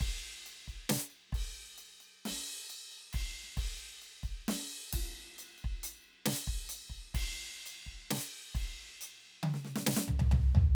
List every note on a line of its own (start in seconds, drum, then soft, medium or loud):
0.01 kick medium
0.01 snare soft
0.01 crash medium
0.46 closed hi-hat medium
0.57 snare soft
0.68 kick soft
0.68 closed hi-hat soft
0.89 closed hi-hat loud
0.89 snare loud
1.10 closed hi-hat soft
1.29 kick soft
1.29 snare soft
1.34 crash medium
1.55 closed hi-hat soft
1.78 closed hi-hat medium
2.00 closed hi-hat soft
2.25 snare medium
2.25 crash loud
2.30 kick soft
2.47 closed hi-hat soft
2.70 closed hi-hat medium
2.92 closed hi-hat soft
3.13 kick soft
3.13 ride medium
3.43 snare soft
3.48 snare soft
3.54 kick soft
3.54 snare soft
3.54 crash medium
3.77 closed hi-hat soft
4.02 closed hi-hat soft
4.23 kick soft
4.23 closed hi-hat soft
4.48 snare loud
4.48 crash loud
4.69 closed hi-hat soft
4.93 kick soft
4.93 ride loud
5.38 closed hi-hat medium
5.58 closed hi-hat soft
5.64 kick soft
5.83 closed hi-hat loud
6.26 snare loud
6.26 crash medium
6.47 kick soft
6.69 closed hi-hat loud
6.90 kick soft
7.14 kick medium
7.14 ride loud
7.66 closed hi-hat medium
7.86 kick soft
8.11 snare loud
8.11 crash medium
8.55 kick soft
8.55 ride medium
9.01 hi-hat pedal medium
9.01 percussion loud
9.43 high tom loud
9.54 snare medium
9.65 snare medium
9.76 snare loud
9.87 snare loud
9.97 snare loud
10.08 floor tom loud
10.19 floor tom loud
10.31 floor tom loud
10.55 floor tom loud